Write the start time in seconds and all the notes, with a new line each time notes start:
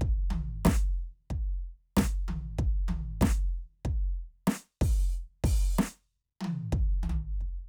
0.01 kick
0.30 floor tom, high tom
0.65 kick, snare
0.67 snare
1.30 kick
1.97 kick, snare
2.28 floor tom, high tom
2.59 kick
2.88 floor tom, high tom
3.21 kick, snare
3.85 kick
4.47 snare
4.81 open hi-hat, kick
5.12 hi-hat pedal
5.44 open hi-hat, kick
5.76 snare, hi-hat pedal
6.41 high tom
6.44 high tom
6.72 kick
7.03 floor tom
7.09 floor tom
7.41 kick